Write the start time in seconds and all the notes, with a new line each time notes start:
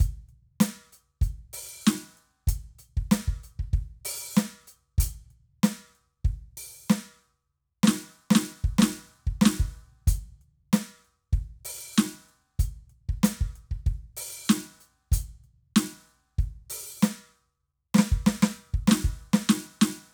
0.00 closed hi-hat, kick
0.29 closed hi-hat
0.61 closed hi-hat, snare
0.93 closed hi-hat
1.22 closed hi-hat, kick
1.54 open hi-hat
1.86 closed hi-hat, snare, hi-hat pedal
2.18 closed hi-hat
2.48 kick, closed hi-hat
2.79 closed hi-hat
2.97 kick
3.12 closed hi-hat, snare
3.28 kick
3.44 closed hi-hat
3.60 kick
3.74 kick, closed hi-hat
4.05 open hi-hat
4.37 closed hi-hat, snare, hi-hat pedal
4.68 closed hi-hat
4.99 closed hi-hat, kick
5.31 closed hi-hat
5.64 closed hi-hat, snare
5.96 closed hi-hat
6.25 kick, closed hi-hat
6.58 open hi-hat
6.90 open hi-hat, snare, hi-hat pedal
7.84 snare
7.88 snare
8.31 snare
8.36 snare
8.64 kick
8.79 snare
8.83 snare
9.27 kick
9.42 snare
9.46 snare
9.60 kick
10.08 closed hi-hat, kick
10.42 closed hi-hat
10.74 closed hi-hat, snare
11.05 closed hi-hat
11.33 kick, closed hi-hat
11.65 open hi-hat
11.97 snare, closed hi-hat, hi-hat pedal
12.29 closed hi-hat
12.60 closed hi-hat, kick
12.90 closed hi-hat
13.09 kick
13.24 closed hi-hat, snare
13.41 kick
13.56 closed hi-hat
13.72 kick
13.87 kick, closed hi-hat
14.17 open hi-hat
14.49 closed hi-hat, snare, hi-hat pedal
14.81 closed hi-hat
15.12 closed hi-hat, kick
15.44 closed hi-hat
15.77 closed hi-hat, snare
16.10 closed hi-hat
16.39 closed hi-hat, kick
16.70 open hi-hat
17.03 closed hi-hat, snare, hi-hat pedal
17.95 snare, hi-hat pedal
17.99 snare
18.12 kick
18.27 snare
18.43 snare
18.74 kick
18.88 snare
18.92 snare
19.05 kick
19.34 snare
19.50 snare
19.82 snare